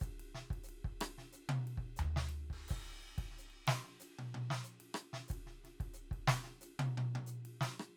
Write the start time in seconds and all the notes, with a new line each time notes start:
0.01 kick, hi-hat pedal, ride
0.20 ride
0.35 snare
0.51 kick, ride
0.64 hi-hat pedal
0.70 ride
0.85 kick
1.02 cross-stick, ride
1.19 snare
1.33 hi-hat pedal, ride
1.50 high tom
1.68 ride
1.78 kick
1.97 floor tom, hi-hat pedal
2.17 snare
2.30 ride
2.51 kick, crash
2.69 kick, hi-hat pedal, crash
2.92 hi-hat pedal
3.03 ride
3.19 kick, ride
3.32 snare
3.39 hi-hat pedal
3.51 ride
3.68 snare, ride
3.85 snare
4.01 hi-hat pedal, ride
4.19 high tom
4.35 high tom
4.51 snare
4.65 hi-hat pedal
4.81 ride
4.95 cross-stick, ride
5.14 snare
5.29 kick, hi-hat pedal, ride
5.47 snare
5.65 snare, ride
5.81 kick, ride
5.94 hi-hat pedal
6.12 kick, ride
6.28 snare, ride
6.44 snare
6.62 hi-hat pedal, ride
6.80 high tom
6.98 high tom
7.16 high tom
7.27 hi-hat pedal
7.46 ride
7.62 snare, ride
7.80 cross-stick